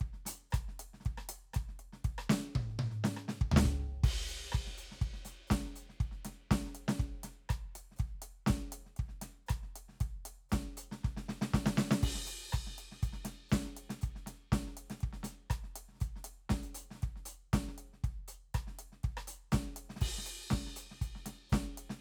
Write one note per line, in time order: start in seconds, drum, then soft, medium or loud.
0.01 kick soft
0.01 closed hi-hat soft
0.14 snare soft
0.26 closed hi-hat loud
0.26 snare soft
0.51 kick medium
0.51 cross-stick medium
0.51 closed hi-hat medium
0.51 hi-hat pedal soft
0.69 snare soft
0.80 closed hi-hat medium
0.94 snare soft
1.01 snare soft
1.06 kick medium
1.06 closed hi-hat soft
1.19 cross-stick medium
1.30 closed hi-hat loud
1.54 kick medium
1.54 cross-stick medium
1.54 closed hi-hat medium
1.69 snare soft
1.80 closed hi-hat soft
1.93 snare soft
2.05 kick medium
2.05 closed hi-hat soft
2.19 cross-stick medium
2.30 snare loud
2.45 snare soft
2.56 kick soft
2.56 high tom loud
2.70 snare soft
2.80 high tom loud
2.91 snare soft
3.05 snare medium
3.17 cross-stick medium
3.29 snare medium
3.42 kick medium
3.52 floor tom loud
3.57 snare loud
3.66 kick soft
4.04 kick medium
4.04 crash medium
4.04 ride medium
4.29 closed hi-hat medium
4.53 closed hi-hat soft
4.53 kick medium
4.53 cross-stick medium
4.68 snare soft
4.79 closed hi-hat medium
4.92 snare soft
5.02 kick medium
5.02 closed hi-hat soft
5.14 snare soft
5.26 open hi-hat medium
5.26 snare soft
5.48 snare loud
5.48 hi-hat pedal soft
5.52 kick medium
5.52 closed hi-hat medium
5.66 snare soft
5.77 closed hi-hat medium
5.90 snare soft
6.01 kick medium
6.01 closed hi-hat soft
6.12 snare soft
6.26 snare soft
6.26 closed hi-hat medium
6.52 kick medium
6.52 snare loud
6.52 closed hi-hat soft
6.67 snare soft
6.76 closed hi-hat medium
6.89 snare medium
7.00 kick medium
7.00 closed hi-hat soft
7.15 snare soft
7.24 snare soft
7.24 closed hi-hat medium
7.50 kick medium
7.50 cross-stick medium
7.50 closed hi-hat medium
7.76 open hi-hat medium
7.92 snare soft
7.97 kick medium
7.97 closed hi-hat soft
7.97 hi-hat pedal soft
8.08 snare soft
8.23 closed hi-hat medium
8.47 kick medium
8.47 snare loud
8.47 closed hi-hat medium
8.61 snare soft
8.73 closed hi-hat medium
8.87 snare soft
8.97 kick soft
8.97 closed hi-hat soft
9.09 snare soft
9.22 snare soft
9.22 open hi-hat medium
9.47 kick medium
9.47 cross-stick medium
9.47 closed hi-hat medium
9.47 hi-hat pedal soft
9.63 snare soft
9.77 closed hi-hat medium
9.89 snare soft
9.93 snare soft
9.96 snare soft
10.01 kick medium
10.01 closed hi-hat medium
10.26 open hi-hat medium
10.50 kick medium
10.50 snare medium
10.50 closed hi-hat medium
10.50 hi-hat pedal soft
10.67 snare soft
10.78 closed hi-hat medium
10.92 snare soft
11.04 kick medium
11.04 snare soft
11.18 snare soft
11.29 snare medium
11.42 snare medium
11.54 kick medium
11.54 snare medium
11.67 snare medium
11.78 snare loud
11.92 snare loud
12.04 kick medium
12.04 crash loud
12.16 snare soft
12.26 open hi-hat medium
12.26 snare soft
12.50 cross-stick medium
12.50 hi-hat pedal soft
12.54 kick medium
12.54 closed hi-hat medium
12.67 snare soft
12.79 closed hi-hat medium
12.92 snare soft
13.03 closed hi-hat soft
13.03 kick medium
13.13 snare soft
13.26 snare soft
13.26 open hi-hat medium
13.50 kick soft
13.50 snare loud
13.50 closed hi-hat medium
13.50 hi-hat pedal soft
13.66 snare soft
13.78 closed hi-hat medium
13.90 snare medium
13.90 closed hi-hat soft
14.02 closed hi-hat medium
14.02 kick medium
14.16 snare soft
14.27 snare soft
14.27 closed hi-hat medium
14.53 closed hi-hat medium
14.53 kick medium
14.53 snare medium
14.68 snare soft
14.78 closed hi-hat medium
14.91 snare soft
14.91 closed hi-hat soft
15.01 kick medium
15.01 closed hi-hat soft
15.14 snare soft
15.24 closed hi-hat medium
15.24 snare soft
15.51 kick medium
15.51 cross-stick medium
15.51 closed hi-hat medium
15.64 snare soft
15.77 closed hi-hat medium
15.89 snare soft
15.93 snare soft
15.95 snare soft
16.01 closed hi-hat soft
16.01 kick medium
16.17 snare soft
16.25 closed hi-hat medium
16.50 kick medium
16.50 snare medium
16.50 closed hi-hat soft
16.64 closed hi-hat soft
16.64 snare soft
16.76 open hi-hat medium
16.91 snare soft
16.95 snare soft
17.03 kick medium
17.03 closed hi-hat soft
17.17 snare soft
17.26 closed hi-hat medium
17.54 kick medium
17.54 snare medium
17.54 closed hi-hat medium
17.69 snare soft
17.79 closed hi-hat medium
17.94 snare soft
18.05 kick medium
18.05 closed hi-hat soft
18.29 open hi-hat medium
18.55 kick medium
18.55 cross-stick medium
18.55 closed hi-hat medium
18.68 snare soft
18.71 snare soft
18.80 closed hi-hat medium
18.93 snare soft
19.04 kick medium
19.04 closed hi-hat soft
19.18 cross-stick medium
19.28 closed hi-hat medium
19.53 closed hi-hat medium
19.53 kick medium
19.53 snare medium
19.67 snare soft
19.77 closed hi-hat medium
19.90 snare soft
19.97 snare soft
20.01 kick medium
20.01 snare soft
20.01 crash loud
20.19 snare soft
20.27 closed hi-hat medium
20.51 kick medium
20.51 snare medium
20.51 closed hi-hat soft
20.67 snare soft
20.77 closed hi-hat medium
20.92 snare soft
21.02 closed hi-hat soft
21.02 kick soft
21.16 snare soft
21.27 snare soft
21.27 open hi-hat medium
21.50 kick medium
21.50 snare medium
21.50 closed hi-hat soft
21.50 hi-hat pedal soft
21.69 snare soft
21.78 closed hi-hat medium
21.90 snare soft